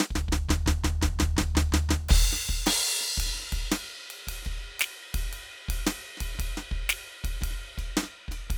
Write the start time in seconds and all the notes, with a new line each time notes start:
0.00 snare
0.10 kick
0.15 snare, floor tom
0.28 kick, floor tom
0.32 snare
0.49 kick, snare, floor tom
0.66 kick, snare, floor tom
0.84 kick, snare, floor tom
1.01 kick, snare, floor tom
1.19 kick, snare, floor tom
1.37 snare, floor tom
1.41 kick
1.55 snare, floor tom
1.59 kick
1.72 snare, floor tom
1.89 kick, snare, floor tom
2.08 kick, snare, crash
2.32 snare
2.49 kick
2.66 snare, crash
3.01 snare
3.18 kick, ride
3.26 snare
3.35 snare
3.40 snare
3.42 snare
3.52 kick, ride
3.72 snare, ride
4.10 ride
4.22 snare
4.27 kick, ride
4.42 kick, snare, ride bell
4.63 kick
4.79 snare, ride
5.14 kick, ride
5.29 snare, ride
5.35 snare
5.69 kick, ride
5.87 snare, ride
6.17 kick, snare, ride
6.35 snare
6.39 kick, ride
6.57 snare
6.71 kick
6.89 snare, ride
7.24 kick, snare, ride
7.41 kick, snare, ride
7.51 snare
7.78 kick, ride bell
7.97 snare, ride bell
8.03 snare
8.28 kick, snare, ride bell
8.47 kick, snare, ride